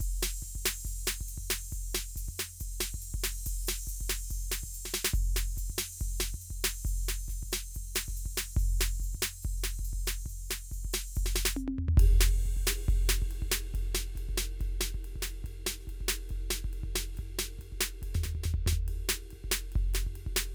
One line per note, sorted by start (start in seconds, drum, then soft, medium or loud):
0.01 open hi-hat medium
0.01 kick medium
0.01 snare soft
0.23 open hi-hat loud
0.23 snare loud
0.43 kick soft
0.43 snare soft
0.56 kick soft
0.66 open hi-hat loud
0.66 snare loud
0.85 open hi-hat medium
0.85 kick soft
0.85 snare soft
1.07 open hi-hat loud
1.07 snare loud
1.21 kick soft
1.27 open hi-hat medium
1.27 snare soft
1.38 kick soft
1.51 open hi-hat loud
1.51 snare loud
1.73 open hi-hat medium
1.73 kick soft
1.73 snare soft
1.95 open hi-hat medium
1.95 snare loud
2.16 open hi-hat loud
2.16 kick soft
2.21 snare soft
2.29 kick soft
2.39 open hi-hat medium
2.39 snare medium
2.61 open hi-hat medium
2.61 kick soft
2.81 open hi-hat loud
2.81 snare loud
2.95 kick soft
3.02 open hi-hat medium
3.02 snare soft
3.15 kick medium
3.24 open hi-hat loud
3.24 snare loud
3.46 open hi-hat loud
3.46 kick soft
3.68 open hi-hat loud
3.68 snare loud
3.88 open hi-hat medium
3.88 kick soft
4.01 kick soft
4.10 open hi-hat loud
4.10 snare loud
4.31 open hi-hat medium
4.31 kick soft
4.52 open hi-hat loud
4.52 snare medium
4.64 kick soft
4.75 open hi-hat medium
4.86 snare medium
4.94 snare loud
5.05 snare loud
5.14 open hi-hat medium
5.14 kick medium
5.37 open hi-hat loud
5.37 snare medium
5.56 open hi-hat medium
5.56 kick soft
5.56 snare soft
5.70 kick soft
5.78 open hi-hat loud
5.78 snare loud
5.98 open hi-hat medium
5.98 kick medium
5.98 snare soft
6.21 open hi-hat medium
6.21 snare loud
6.35 kick soft
6.42 open hi-hat medium
6.51 kick soft
6.65 open hi-hat loud
6.65 snare loud
6.85 open hi-hat medium
6.85 kick medium
7.09 open hi-hat medium
7.09 snare medium
7.29 open hi-hat medium
7.29 kick soft
7.29 snare soft
7.43 kick soft
7.52 open hi-hat medium
7.52 snare loud
7.72 open hi-hat medium
7.72 snare soft
7.77 kick soft
7.96 open hi-hat loud
7.96 snare loud
8.09 kick soft
8.09 snare soft
8.17 open hi-hat medium
8.26 kick soft
8.38 open hi-hat medium
8.38 snare loud
8.57 open hi-hat medium
8.57 kick medium
8.57 snare soft
8.81 open hi-hat medium
8.81 snare loud
9.00 open hi-hat medium
9.00 kick soft
9.15 kick soft
9.23 open hi-hat medium
9.23 snare loud
9.43 open hi-hat medium
9.43 kick medium
9.64 open hi-hat medium
9.64 snare medium
9.80 kick soft
9.85 open hi-hat medium
9.94 kick soft
10.07 open hi-hat medium
10.07 snare loud
10.26 open hi-hat medium
10.26 kick soft
10.51 open hi-hat medium
10.51 snare medium
10.72 open hi-hat medium
10.72 kick soft
10.85 kick soft
10.94 open hi-hat loud
10.94 snare loud
11.16 open hi-hat medium
11.16 kick medium
11.26 snare medium
11.36 snare loud
11.46 snare loud
11.57 high tom loud
11.68 high tom loud
11.79 floor tom loud
11.89 floor tom loud
11.98 kick loud
11.98 ride loud
12.21 snare loud
12.21 crash loud
12.46 kick soft
12.57 kick soft
12.67 snare loud
12.67 ride loud
12.81 snare soft
12.89 kick medium
12.89 ride soft
13.09 snare loud
13.09 ride medium
13.22 kick medium
13.22 snare soft
13.31 ride medium
13.43 kick medium
13.52 snare loud
13.52 ride medium
13.74 kick medium
13.74 snare soft
13.74 ride medium
13.95 snare loud
13.95 ride medium
14.16 kick soft
14.16 snare soft
14.16 ride medium
14.29 kick soft
14.38 snare loud
14.38 ride medium
14.60 kick medium
14.60 snare soft
14.60 ride soft
14.81 snare loud
14.81 ride medium
14.95 kick soft
14.95 snare soft
15.05 ride soft
15.16 kick soft
15.23 snare medium
15.23 ride medium
15.45 kick soft
15.45 snare soft
15.45 ride soft
15.67 snare loud
15.67 ride medium
15.81 snare soft
15.88 kick soft
15.88 ride soft
16.01 kick soft
16.09 snare loud
16.09 ride medium
16.24 snare soft
16.30 kick soft
16.30 ride soft
16.51 snare loud
16.51 ride medium
16.65 kick medium
16.65 snare soft
16.73 ride soft
16.84 kick medium
16.96 snare loud
16.96 ride medium
17.15 snare soft
17.15 ride soft
17.19 kick medium
17.39 snare loud
17.39 ride medium
17.55 snare soft
17.59 kick soft
17.59 ride soft
17.73 kick soft
17.81 snare loud
17.81 ride medium
18.03 kick soft
18.03 ride medium
18.15 snare medium
18.15 floor tom loud
18.24 snare medium
18.24 floor tom medium
18.36 kick soft
18.44 snare medium
18.44 floor tom loud
18.55 kick medium
18.67 snare loud
18.67 floor tom loud
18.73 kick medium
18.88 ride medium
19.09 snare loud
19.09 ride medium
19.31 kick soft
19.31 ride soft
19.45 kick soft
19.52 snare loud
19.52 ride medium
19.71 snare soft
19.71 ride soft
19.76 kick medium
19.94 snare medium
19.94 ride medium
20.03 snare soft
20.07 kick soft
20.07 snare soft
20.16 ride medium
20.27 kick medium
20.37 snare loud
20.37 ride medium